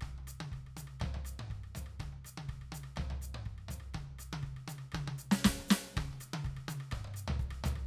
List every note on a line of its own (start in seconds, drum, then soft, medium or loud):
0.01 kick soft
0.01 cross-stick medium
0.01 hi-hat pedal soft
0.01 high tom medium
0.09 high tom soft
0.19 high tom soft
0.24 cross-stick soft
0.24 high tom soft
0.28 hi-hat pedal medium
0.41 high tom loud
0.52 kick soft
0.52 cross-stick soft
0.67 cross-stick soft
0.78 hi-hat pedal medium
0.78 high tom medium
0.88 cross-stick soft
1.01 kick soft
1.01 cross-stick soft
1.01 floor tom loud
1.15 floor tom medium
1.26 cross-stick soft
1.26 hi-hat pedal medium
1.40 mid tom loud
1.51 kick soft
1.51 cross-stick soft
1.64 cross-stick soft
1.76 floor tom medium
1.76 hi-hat pedal medium
1.87 cross-stick soft
2.00 kick soft
2.00 cross-stick soft
2.00 hi-hat pedal soft
2.00 high tom medium
2.13 high tom soft
2.25 cross-stick soft
2.25 hi-hat pedal medium
2.38 high tom medium
2.49 kick soft
2.49 cross-stick soft
2.62 cross-stick soft
2.73 hi-hat pedal medium
2.73 high tom medium
2.84 cross-stick soft
2.97 kick soft
2.97 cross-stick soft
2.97 floor tom loud
3.11 floor tom medium
3.22 cross-stick soft
3.22 hi-hat pedal medium
3.35 mid tom medium
3.46 kick soft
3.46 cross-stick soft
3.59 cross-stick soft
3.69 floor tom medium
3.69 hi-hat pedal medium
3.81 cross-stick soft
3.95 kick soft
3.95 cross-stick soft
3.95 high tom medium
4.08 high tom soft
4.12 high tom soft
4.19 cross-stick soft
4.19 hi-hat pedal medium
4.34 high tom loud
4.44 kick soft
4.44 cross-stick soft
4.57 cross-stick soft
4.69 hi-hat pedal medium
4.69 high tom loud
4.79 cross-stick soft
4.93 kick soft
4.93 cross-stick soft
4.93 high tom loud
5.08 high tom loud
5.19 cross-stick soft
5.19 hi-hat pedal medium
5.32 snare loud
5.45 kick medium
5.45 snare loud
5.60 snare soft
5.69 snare loud
5.69 hi-hat pedal medium
5.97 kick medium
5.97 cross-stick medium
5.97 high tom loud
6.14 high tom soft
6.16 high tom soft
6.21 cross-stick soft
6.21 hi-hat pedal medium
6.34 high tom loud
6.44 kick soft
6.44 cross-stick soft
6.44 hi-hat pedal soft
6.57 cross-stick soft
6.69 hi-hat pedal medium
6.69 high tom loud
6.81 cross-stick soft
6.92 kick soft
6.92 cross-stick medium
6.92 hi-hat pedal soft
6.92 mid tom loud
7.05 mid tom medium
7.08 mid tom medium
7.15 cross-stick soft
7.15 hi-hat pedal medium
7.28 floor tom loud
7.40 kick soft
7.40 hi-hat pedal soft
7.51 cross-stick medium
7.65 floor tom loud
7.65 hi-hat pedal medium
7.76 cross-stick soft